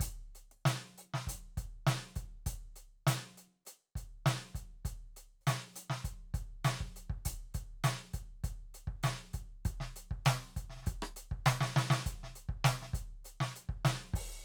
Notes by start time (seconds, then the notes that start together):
0.05 closed hi-hat, kick
0.35 closed hi-hat
0.51 closed hi-hat
0.65 closed hi-hat, snare
0.98 open hi-hat, hi-hat pedal
1.14 snare
1.27 closed hi-hat, kick
1.57 closed hi-hat, kick
1.87 open hi-hat, snare, hi-hat pedal
2.16 closed hi-hat, kick
2.46 closed hi-hat, kick
2.76 closed hi-hat
3.07 closed hi-hat, snare
3.37 closed hi-hat
3.65 closed hi-hat, hi-hat pedal
3.96 closed hi-hat, kick
4.25 closed hi-hat, snare, hi-hat pedal
4.55 closed hi-hat, kick
4.85 closed hi-hat, kick
5.16 closed hi-hat
5.41 hi-hat pedal
5.47 closed hi-hat, snare
5.72 closed hi-hat, hi-hat pedal
5.90 snare
6.04 closed hi-hat, kick
6.34 closed hi-hat, kick
6.64 closed hi-hat, snare
6.80 kick
6.96 closed hi-hat
7.10 kick
7.25 closed hi-hat, kick
7.54 closed hi-hat, kick
7.73 kick
7.84 closed hi-hat, snare
8.13 closed hi-hat, kick
8.44 closed hi-hat, kick
8.74 closed hi-hat
8.87 kick
9.03 closed hi-hat, snare
9.33 closed hi-hat, kick
9.65 closed hi-hat, kick
9.80 snare
9.96 closed hi-hat
10.11 kick
10.25 closed hi-hat, snare
10.56 closed hi-hat, kick
10.70 snare
10.76 snare
10.82 snare
10.86 closed hi-hat, kick
11.02 cross-stick
11.16 closed hi-hat
11.31 kick
11.46 closed hi-hat, snare
11.61 snare
11.76 snare
11.90 snare
12.06 closed hi-hat, kick
12.23 snare
12.35 closed hi-hat
12.49 kick
12.64 closed hi-hat, snare
12.82 snare
12.94 open hi-hat, kick
13.25 closed hi-hat, hi-hat pedal
13.40 snare
13.56 closed hi-hat
13.69 kick
13.85 closed hi-hat, snare
14.14 open hi-hat, kick